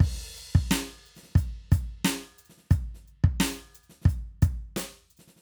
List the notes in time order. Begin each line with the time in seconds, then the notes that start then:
0.01 kick, crash
0.15 snare
0.19 snare
0.36 closed hi-hat
0.56 kick
0.72 closed hi-hat, snare
1.06 closed hi-hat
1.15 closed hi-hat, snare
1.24 snare
1.30 snare
1.36 closed hi-hat, kick, snare
1.72 closed hi-hat, kick
2.05 closed hi-hat, snare
2.39 closed hi-hat
2.45 closed hi-hat
2.50 snare
2.58 snare
2.64 snare
2.70 closed hi-hat, kick, snare
2.95 snare
3.08 closed hi-hat
3.24 kick
3.41 open hi-hat, snare
3.57 hi-hat pedal
3.75 closed hi-hat
3.84 closed hi-hat
3.90 snare
4.02 kick, snare
4.09 closed hi-hat
4.43 kick, closed hi-hat
4.77 closed hi-hat, snare
4.92 hi-hat pedal
5.11 closed hi-hat
5.17 snare, closed hi-hat
5.28 snare
5.37 snare